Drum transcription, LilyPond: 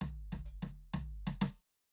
\new DrumStaff \drummode { \time 4/4 \tempo 4 = 125 \tuplet 3/2 { <sn tomfh>8 r8 <sn tomfh>8 hhp8 <sn tomfh>8 r8 <sn tomfh>8 r8 sn8 } sn4 | }